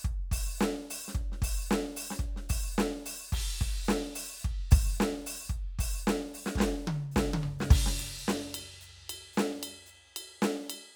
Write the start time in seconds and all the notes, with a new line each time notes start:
0.01 kick, hi-hat pedal
0.32 open hi-hat, kick
0.58 snare, hi-hat pedal
0.91 open hi-hat
1.08 snare, hi-hat pedal
1.15 kick
1.32 snare
1.42 open hi-hat, kick
1.67 hi-hat pedal
1.71 snare
1.97 open hi-hat
2.11 snare
2.16 kick, hi-hat pedal
2.37 snare
2.50 open hi-hat, kick
2.73 hi-hat pedal
2.78 snare
3.06 open hi-hat
3.29 hi-hat pedal
3.33 kick, crash
3.61 open hi-hat, kick
3.85 snare, hi-hat pedal
4.16 open hi-hat
4.39 hi-hat pedal, open hi-hat
4.45 kick
4.71 open hi-hat, kick
4.96 hi-hat pedal
5.00 snare
5.27 open hi-hat
5.48 kick, hi-hat pedal
5.79 open hi-hat, kick
6.01 hi-hat pedal
6.07 snare
6.35 open hi-hat
6.46 snare
6.51 hi-hat pedal
6.56 kick, snare
6.61 snare
6.88 high tom
7.12 hi-hat pedal
7.16 kick, snare
7.34 high tom
7.44 floor tom
7.59 snare, hi-hat pedal
7.71 kick, crash
7.86 snare
8.00 snare, ride, floor tom
8.19 hi-hat pedal
8.28 snare
8.55 ride bell
8.81 hi-hat pedal
9.10 ride bell
9.34 hi-hat pedal
9.38 snare
9.63 ride bell
9.87 hi-hat pedal
10.17 ride bell
10.42 snare, hi-hat pedal
10.70 ride bell